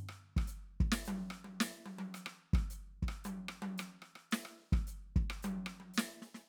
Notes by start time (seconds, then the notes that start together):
0.09 cross-stick
0.37 kick, cross-stick
0.48 hi-hat pedal
0.81 kick
0.92 snare
1.06 hi-hat pedal, high tom
1.31 cross-stick
1.45 high tom
1.61 snare, hi-hat pedal
1.86 high tom
1.99 high tom
2.15 cross-stick, hi-hat pedal
2.27 cross-stick
2.54 kick, cross-stick
2.71 hi-hat pedal
3.03 kick
3.09 cross-stick
3.25 hi-hat pedal, high tom
3.49 cross-stick
3.63 high tom
3.78 cross-stick, hi-hat pedal
4.03 cross-stick
4.16 cross-stick
4.32 snare, hi-hat pedal
4.46 cross-stick
4.73 kick, cross-stick
4.88 hi-hat pedal
5.17 kick
5.31 cross-stick
5.43 hi-hat pedal, high tom
5.67 cross-stick
5.81 high tom
5.94 snare, hi-hat pedal
6.22 snare
6.35 snare